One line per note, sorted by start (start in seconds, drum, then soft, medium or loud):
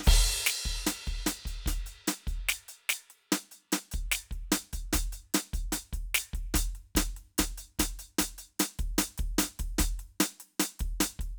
0.01 snare medium
0.01 hi-hat pedal medium
0.07 kick loud
0.07 snare soft
0.07 crash loud
0.47 closed hi-hat loud
0.47 snare loud
0.66 kick medium
0.66 closed hi-hat soft
0.87 closed hi-hat loud
0.87 snare loud
1.07 closed hi-hat soft
1.07 kick medium
1.27 closed hi-hat loud
1.27 snare loud
1.46 closed hi-hat soft
1.46 kick soft
1.66 open hi-hat medium
1.66 kick medium
1.66 snare medium
1.66 hi-hat pedal soft
1.76 kick soft
1.86 closed hi-hat soft
2.08 closed hi-hat loud
2.08 snare loud
2.27 closed hi-hat soft
2.27 kick medium
2.49 closed hi-hat loud
2.49 snare loud
2.69 closed hi-hat soft
2.90 closed hi-hat loud
2.90 snare loud
3.10 closed hi-hat soft
3.32 closed hi-hat loud
3.32 snare loud
3.52 closed hi-hat soft
3.72 closed hi-hat loud
3.72 snare loud
3.92 closed hi-hat medium
3.92 kick medium
4.12 closed hi-hat loud
4.12 snare loud
4.31 kick soft
4.31 closed hi-hat soft
4.52 closed hi-hat loud
4.52 snare loud
4.73 closed hi-hat medium
4.73 kick soft
4.93 closed hi-hat loud
4.93 kick medium
4.93 snare medium
5.13 closed hi-hat soft
5.34 closed hi-hat loud
5.34 snare loud
5.54 closed hi-hat medium
5.54 kick medium
5.73 closed hi-hat loud
5.73 snare medium
5.93 kick soft
5.93 closed hi-hat medium
6.15 closed hi-hat loud
6.15 snare loud
6.34 kick medium
6.34 closed hi-hat soft
6.54 closed hi-hat loud
6.54 kick medium
6.54 snare medium
6.66 kick soft
6.75 closed hi-hat soft
6.96 closed hi-hat loud
6.96 kick medium
6.96 snare loud
7.17 closed hi-hat soft
7.39 closed hi-hat loud
7.39 kick soft
7.39 snare loud
7.58 closed hi-hat medium
7.79 closed hi-hat loud
7.79 kick soft
7.79 snare loud
7.99 closed hi-hat medium
8.19 closed hi-hat loud
8.19 kick soft
8.19 snare loud
8.38 closed hi-hat medium
8.60 closed hi-hat loud
8.60 snare loud
8.79 kick medium
8.79 closed hi-hat medium
8.98 closed hi-hat loud
8.98 snare loud
9.18 kick medium
9.18 closed hi-hat medium
9.39 closed hi-hat loud
9.39 snare loud
9.43 snare medium
9.60 kick medium
9.60 closed hi-hat medium
9.79 open hi-hat loud
9.79 kick medium
9.79 snare loud
10.00 closed hi-hat soft
10.21 closed hi-hat loud
10.21 snare loud
10.40 closed hi-hat medium
10.60 closed hi-hat loud
10.60 snare loud
10.80 kick medium
10.80 closed hi-hat medium
11.01 closed hi-hat loud
11.01 snare loud
11.20 kick soft
11.20 closed hi-hat soft